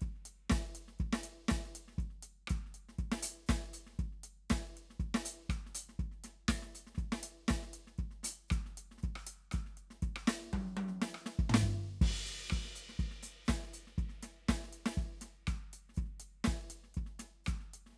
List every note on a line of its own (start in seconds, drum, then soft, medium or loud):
0.01 kick soft
0.01 closed hi-hat soft
0.16 snare soft
0.26 closed hi-hat medium
0.50 kick medium
0.50 snare loud
0.50 closed hi-hat medium
0.75 closed hi-hat medium
0.88 snare soft
0.99 kick medium
0.99 closed hi-hat soft
1.13 snare medium
1.24 closed hi-hat medium
1.49 kick medium
1.49 snare loud
1.49 closed hi-hat medium
1.65 snare soft
1.75 closed hi-hat medium
1.88 snare soft
1.91 snare soft
1.99 kick medium
1.99 closed hi-hat soft
2.10 snare soft
2.23 closed hi-hat medium
2.48 kick medium
2.48 cross-stick medium
2.48 closed hi-hat medium
2.66 snare soft
2.75 closed hi-hat medium
2.89 snare soft
2.99 kick medium
2.99 closed hi-hat soft
3.12 snare medium
3.23 open hi-hat loud
3.47 kick medium
3.47 snare loud
3.47 closed hi-hat medium
3.47 hi-hat pedal soft
3.64 snare soft
3.74 closed hi-hat medium
3.87 snare soft
3.90 snare soft
3.94 snare soft
3.99 kick medium
3.99 closed hi-hat soft
4.12 snare soft
4.24 closed hi-hat medium
4.50 kick medium
4.50 snare loud
4.50 closed hi-hat medium
4.77 closed hi-hat soft
4.91 snare soft
5.00 kick medium
5.00 closed hi-hat soft
5.15 snare loud
5.26 closed hi-hat loud
5.50 kick medium
5.50 cross-stick medium
5.50 closed hi-hat medium
5.67 snare soft
5.75 closed hi-hat loud
5.89 snare soft
6.00 kick medium
6.00 closed hi-hat soft
6.12 snare soft
6.24 snare soft
6.24 closed hi-hat medium
6.49 kick medium
6.49 snare loud
6.49 closed hi-hat medium
6.62 snare soft
6.75 closed hi-hat medium
6.87 snare soft
6.95 kick medium
6.95 snare soft
6.99 closed hi-hat soft
7.12 snare medium
7.23 closed hi-hat loud
7.48 kick medium
7.48 snare loud
7.48 closed hi-hat medium
7.63 snare soft
7.74 closed hi-hat medium
7.87 snare soft
7.98 kick soft
7.98 closed hi-hat soft
8.11 snare soft
8.24 closed hi-hat loud
8.24 snare soft
8.49 kick medium
8.49 cross-stick medium
8.49 closed hi-hat medium
8.49 hi-hat pedal soft
8.66 snare soft
8.78 closed hi-hat medium
8.92 snare soft
8.98 snare soft
9.03 kick medium
9.03 closed hi-hat soft
9.16 cross-stick medium
9.27 closed hi-hat loud
9.52 kick medium
9.52 cross-stick medium
9.52 closed hi-hat medium
9.66 snare soft
9.77 closed hi-hat soft
9.91 snare soft
10.03 kick medium
10.03 closed hi-hat soft
10.16 cross-stick medium
10.28 snare loud
10.42 snare soft
10.53 kick soft
10.53 high tom loud
10.67 snare soft
10.77 high tom loud
10.88 snare soft
11.02 snare medium
11.15 cross-stick medium
11.26 snare medium
11.39 kick medium
11.50 floor tom loud
11.54 snare loud
11.63 kick soft
12.02 kick medium
12.02 crash medium
12.02 ride medium
12.27 closed hi-hat medium
12.50 closed hi-hat soft
12.50 kick medium
12.50 cross-stick medium
12.65 snare soft
12.76 closed hi-hat medium
12.89 snare soft
13.00 kick medium
13.00 closed hi-hat soft
13.11 snare soft
13.23 open hi-hat medium
13.23 snare soft
13.45 snare loud
13.45 hi-hat pedal soft
13.50 kick medium
13.50 closed hi-hat medium
13.63 snare soft
13.74 closed hi-hat medium
13.87 snare soft
13.98 kick medium
13.98 closed hi-hat soft
14.09 snare soft
14.23 snare soft
14.23 closed hi-hat medium
14.49 kick medium
14.49 snare loud
14.49 closed hi-hat soft
14.64 snare soft
14.73 closed hi-hat medium
14.86 snare medium
14.98 kick medium
14.98 closed hi-hat soft
15.12 snare soft
15.22 snare soft
15.22 closed hi-hat medium
15.47 kick medium
15.47 cross-stick medium
15.47 closed hi-hat medium
15.73 open hi-hat medium
15.89 snare soft
15.94 kick medium
15.94 closed hi-hat soft
15.94 hi-hat pedal soft
16.06 snare soft
16.20 closed hi-hat medium
16.45 kick medium
16.45 snare loud
16.45 closed hi-hat medium
16.58 snare soft
16.70 closed hi-hat medium
16.84 snare soft
16.95 kick soft
16.95 closed hi-hat soft
17.06 snare soft
17.20 snare soft
17.20 open hi-hat medium
17.45 kick medium
17.45 cross-stick medium
17.45 closed hi-hat medium
17.45 hi-hat pedal soft
17.61 snare soft
17.74 closed hi-hat medium
17.87 snare soft
17.90 snare soft
17.93 snare soft